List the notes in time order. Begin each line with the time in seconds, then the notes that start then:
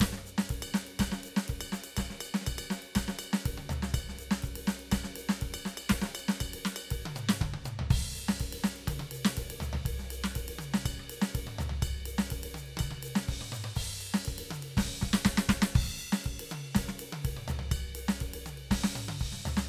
0.01 kick, snare, hi-hat pedal, ride
0.13 snare
0.18 cross-stick
0.27 hi-hat pedal
0.39 snare
0.50 kick, hi-hat pedal, ride
0.63 ride bell
0.75 snare, hi-hat pedal
0.87 ride
1.00 kick, snare, hi-hat pedal, ride bell
1.12 snare
1.24 hi-hat pedal, ride
1.37 snare
1.49 kick, hi-hat pedal, ride
1.61 ride bell
1.73 snare, hi-hat pedal
1.84 ride bell
1.97 kick, snare, hi-hat pedal, ride bell
2.11 snare
2.15 snare
2.21 hi-hat pedal, ride bell
2.35 snare
2.42 snare
2.47 kick, hi-hat pedal, ride bell
2.59 ride bell
2.71 snare, hi-hat pedal
2.83 ride
2.96 kick, snare, hi-hat pedal, ride bell
3.09 snare
3.20 hi-hat pedal, ride bell
3.34 snare
3.46 kick, hi-hat pedal, ride
3.58 high tom
3.70 floor tom, hi-hat pedal
3.83 snare
3.94 kick, hi-hat pedal, ride bell
4.10 snare
4.14 snare
4.17 snare, hi-hat pedal, ride
4.32 snare
4.43 kick, hi-hat pedal, ride
4.56 ride
4.68 snare, hi-hat pedal
4.80 ride
4.92 kick, snare, hi-hat pedal, ride bell
5.05 snare
5.16 hi-hat pedal, ride
5.30 snare
5.42 kick, hi-hat pedal, ride
5.55 ride bell
5.66 snare, hi-hat pedal
5.78 ride bell
5.90 kick, snare, hi-hat pedal, ride
6.02 snare
6.06 snare
6.16 hi-hat pedal, ride bell
6.29 snare
6.41 kick, hi-hat pedal, ride bell
6.54 ride
6.66 snare, hi-hat pedal
6.77 ride bell
6.91 kick, hi-hat pedal, ride
7.06 high tom
7.13 kick, hi-hat pedal, mid tom
7.30 snare
7.40 kick, hi-hat pedal, high tom
7.55 high tom
7.64 kick, hi-hat pedal, mid tom
7.80 floor tom
7.91 kick, hi-hat pedal, crash
8.16 hi-hat pedal, ride
8.29 snare
8.40 kick, hi-hat pedal, ride
8.53 ride
8.64 snare, hi-hat pedal
8.77 ride
8.88 kick, hi-hat pedal, high tom, ride
9.00 high tom
9.12 hi-hat pedal, ride
9.26 snare
9.38 kick, hi-hat pedal, ride
9.51 ride
9.61 floor tom, hi-hat pedal
9.74 floor tom
9.86 kick, hi-hat pedal, ride
10.00 snare
10.03 snare
10.11 hi-hat pedal, ride
10.24 snare
10.36 kick, hi-hat pedal, ride
10.49 ride
10.59 hi-hat pedal, high tom
10.74 snare
10.86 kick, hi-hat pedal, ride bell
11.00 cross-stick
11.10 hi-hat pedal, ride
11.22 snare
11.35 kick, hi-hat pedal, ride
11.48 mid tom
11.59 floor tom, hi-hat pedal
11.70 floor tom
11.83 kick, hi-hat pedal, ride bell
12.06 hi-hat pedal, ride
12.19 snare
12.31 kick, hi-hat pedal, ride
12.44 ride
12.55 hi-hat pedal, high tom
12.67 ride
12.78 kick, high tom, ride bell
12.82 hi-hat pedal
12.91 high tom
13.03 hi-hat pedal, ride
13.16 snare
13.29 kick, hi-hat pedal, ride
13.42 mid tom
13.53 hi-hat pedal, mid tom
13.65 mid tom
13.77 kick, hi-hat pedal, crash
14.01 hi-hat pedal, ride bell
14.15 snare
14.26 kick, hi-hat pedal, ride
14.39 ride
14.51 hi-hat pedal, high tom
14.63 ride
14.78 kick, snare, hi-hat pedal, ride
14.87 snare
15.02 kick, snare, hi-hat pedal
15.14 snare
15.26 kick, snare, hi-hat pedal
15.38 snare
15.49 kick, snare, hi-hat pedal
15.63 snare
15.76 kick, crash
15.99 hi-hat pedal, ride
16.13 snare
16.23 kick, hi-hat pedal, ride
16.40 ride
16.50 hi-hat pedal, high tom
16.64 ride
16.75 kick, snare, hi-hat pedal, ride
16.89 snare
16.99 hi-hat pedal, ride
17.13 high tom
17.23 kick, hi-hat pedal, ride
17.37 mid tom
17.48 floor tom, hi-hat pedal
17.60 floor tom
17.72 kick, hi-hat pedal, ride bell
17.96 hi-hat pedal, ride
18.09 snare
18.21 kick, hi-hat pedal, ride
18.34 ride
18.46 hi-hat pedal, high tom
18.58 ride
18.72 kick, snare, hi-hat pedal, ride
18.84 snare
18.95 hi-hat pedal, mid tom
19.09 high tom
19.20 kick, hi-hat pedal, ride
19.33 snare
19.40 snare
19.46 floor tom, hi-hat pedal
19.58 snare